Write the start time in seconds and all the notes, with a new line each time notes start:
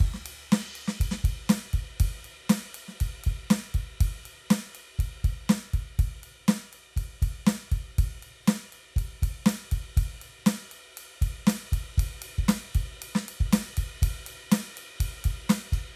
0.01 kick, crash
0.15 snare
0.27 ride
0.53 snare, ride
0.76 ride
0.89 snare
1.01 kick, ride
1.12 snare
1.25 kick, ride
1.50 snare, ride
1.74 kick, ride
2.01 kick, ride
2.25 ride
2.50 snare, ride
2.75 ride
2.89 snare
3.01 kick, ride
3.25 kick, ride
3.51 snare, ride
3.75 kick, ride
4.01 kick, ride
4.26 ride
4.51 snare, ride
4.76 ride
5.00 kick, ride
5.25 kick, ride
5.50 snare, ride
5.74 kick, ride
6.00 kick, ride
6.24 ride
6.49 snare, ride
6.74 ride
6.97 kick, ride
7.23 kick, ride
7.48 snare, ride
7.72 kick, ride
7.99 kick, ride
8.24 ride
8.44 hi-hat pedal
8.49 snare, ride
8.73 ride
8.97 kick, ride
9.23 kick, ride
9.47 snare, hi-hat pedal, ride
9.72 kick, ride
9.98 kick, ride
10.22 ride
10.47 snare, ride
10.72 ride
10.94 hi-hat pedal, ride
11.22 kick, ride
11.47 snare, hi-hat pedal, ride
11.73 kick, ride
11.99 kick, ride
12.23 ride
12.39 kick
12.49 snare, ride
12.76 kick, ride
13.03 ride
13.16 snare
13.29 ride
13.41 kick
13.54 snare, ride
13.78 kick, ride
14.03 kick, ride
14.27 ride
14.53 snare, ride
14.78 ride
15.01 kick, ride
15.25 kick, ride
15.50 snare, ride
15.73 kick, ride bell